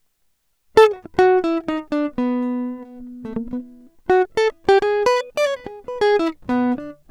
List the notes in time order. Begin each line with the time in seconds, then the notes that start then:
0.78 A4
0.88 G#4
0.96 F#4
1.20 F#4
1.45 E4
1.69 D#4
1.93 D4
2.19 B3
3.26 A3
3.38 A#3
3.53 B3
4.11 F#4
4.38 A4
4.70 G4
4.83 G#4
5.07 B4
5.38 D5
5.48 C#5
5.58 B4
5.89 B4
6.02 G#4
6.20 E4
6.79 D4